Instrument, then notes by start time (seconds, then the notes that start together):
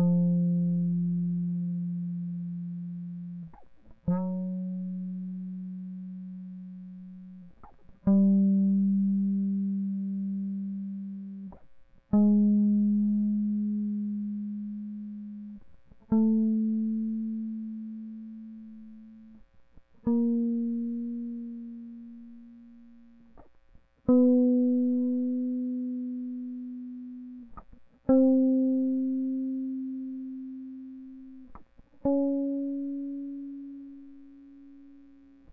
electric guitar
0.00 F3
4.09 F3
4.19 F#3
8.09 G3
12.14 G#3
16.13 A3
20.08 A#3
24.10 B3
28.10 C4
32.06 C#4